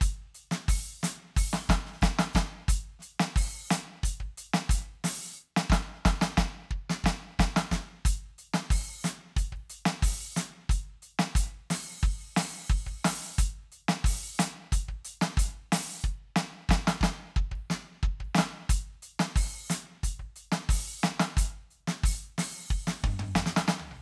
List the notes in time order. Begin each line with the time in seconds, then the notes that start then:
0.01 closed hi-hat, kick
0.34 closed hi-hat
0.51 snare
0.68 open hi-hat, kick
1.00 closed hi-hat, snare, hi-hat pedal
1.34 open hi-hat, kick, snare
1.53 snare
1.69 kick, snare, hi-hat pedal
1.85 snare
1.92 snare
1.95 snare
2.01 kick, snare, hi-hat pedal
2.19 snare
2.33 kick, snare, hi-hat pedal
2.68 closed hi-hat, kick
2.99 closed hi-hat, snare
3.19 snare
3.36 open hi-hat, kick
3.69 closed hi-hat, snare, hi-hat pedal
4.03 closed hi-hat, kick
4.20 kick
4.37 closed hi-hat
4.53 snare
4.69 closed hi-hat, kick
5.04 open hi-hat, snare
5.35 hi-hat pedal
5.56 snare
5.70 kick, snare
5.91 cross-stick, snare
6.05 kick, snare
6.21 snare
6.37 kick, snare
6.71 kick, snare
6.89 snare
7.04 kick, snare
7.39 kick, snare
7.56 snare
7.71 kick, snare
8.05 closed hi-hat, kick
8.38 closed hi-hat
8.54 snare
8.70 open hi-hat, kick
9.04 open hi-hat, snare, hi-hat pedal
9.36 closed hi-hat, kick
9.52 kick
9.56 crash, ride
9.70 closed hi-hat
9.85 snare
10.02 open hi-hat, kick
10.35 closed hi-hat, snare, hi-hat pedal
10.69 closed hi-hat, kick
11.02 closed hi-hat
11.19 snare
11.35 closed hi-hat, kick
11.70 open hi-hat, snare
12.03 kick
12.36 open hi-hat, snare
12.70 open hi-hat, kick
12.86 kick, cross-stick
12.91 crash, ride
13.04 open hi-hat, snare
13.35 closed hi-hat, kick, hi-hat pedal
13.72 closed hi-hat
13.88 snare
14.04 open hi-hat, kick
14.37 closed hi-hat, snare, hi-hat pedal
14.72 closed hi-hat, kick
14.88 kick
15.05 closed hi-hat
15.21 snare
15.37 open hi-hat, kick
15.72 open hi-hat, snare
16.04 kick, hi-hat pedal
16.36 snare
16.69 kick, snare
16.87 snare
17.01 kick, snare
17.36 kick
17.51 kick, snare
17.55 crash, high tom, ride
17.70 snare
18.03 kick
18.20 kick
18.24 snare, crash, ride
18.35 snare
18.38 snare
18.69 closed hi-hat, kick
19.02 closed hi-hat
19.19 snare
19.36 open hi-hat, kick
19.69 closed hi-hat, snare, hi-hat pedal
20.03 closed hi-hat, kick
20.19 kick
20.36 closed hi-hat
20.52 snare
20.69 open hi-hat, kick
21.03 snare, hi-hat pedal
21.19 snare
21.37 closed hi-hat, kick
21.70 closed hi-hat
21.87 snare
22.03 open hi-hat, kick
22.38 open hi-hat, snare
22.70 kick
22.87 snare
23.04 kick, high tom
23.19 high tom
23.35 kick, snare
23.46 snare
23.56 snare
23.68 snare
23.80 mid tom
23.91 floor tom